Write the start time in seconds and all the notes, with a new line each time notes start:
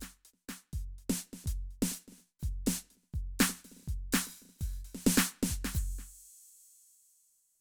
0.01 closed hi-hat, snare, hi-hat pedal
0.26 closed hi-hat
0.34 snare
0.49 closed hi-hat, snare
0.74 open hi-hat, kick
0.80 kick
0.99 closed hi-hat
1.10 snare
1.23 closed hi-hat
1.34 snare
1.45 closed hi-hat, kick, snare
1.53 kick
1.71 closed hi-hat
1.83 snare
1.92 closed hi-hat, snare
2.08 snare
2.13 snare
2.19 closed hi-hat, snare
2.40 kick, snare, hi-hat pedal
2.44 closed hi-hat
2.49 kick
2.52 kick
2.67 open hi-hat, snare
2.91 closed hi-hat, snare
2.96 snare
2.97 snare
3.04 snare
3.14 kick, closed hi-hat, hi-hat pedal
3.40 open hi-hat, snare
3.50 snare
3.65 open hi-hat, snare
3.72 snare
3.77 snare
3.80 snare
3.83 snare, hi-hat pedal
3.88 closed hi-hat, kick, snare
3.94 kick
4.13 open hi-hat, snare
4.27 snare
4.38 open hi-hat
4.42 snare
4.46 snare
4.50 snare
4.57 snare, hi-hat pedal
4.62 open hi-hat, kick
4.85 open hi-hat
4.95 snare
5.01 hi-hat pedal
5.07 snare
5.18 snare
5.26 hi-hat pedal
5.43 snare, hi-hat pedal
5.50 kick
5.65 snare
5.74 kick, snare, hi-hat pedal
5.79 kick, crash
5.91 hi-hat pedal
5.99 snare